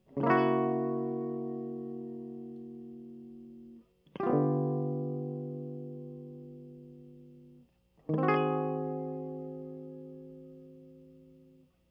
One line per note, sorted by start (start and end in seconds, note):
0.18 3.80 C#3
0.24 3.83 A#3
0.24 3.83 E4
0.30 3.80 F#4
4.20 7.61 F4
4.20 6.86 G4
4.27 7.67 B3
4.34 7.64 D3
8.10 11.68 D#3
8.18 11.68 C4
8.23 11.63 F#4
8.28 10.46 G#4
8.34 8.40 D5